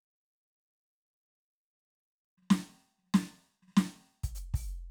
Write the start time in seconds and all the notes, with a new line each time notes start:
2.38 snare
2.42 snare
2.48 snare
2.51 snare
2.99 snare
3.04 snare
3.07 snare
3.14 snare
3.63 snare
3.68 snare
3.71 snare
3.77 snare
4.24 closed hi-hat, kick
4.35 hi-hat pedal
4.54 open hi-hat, kick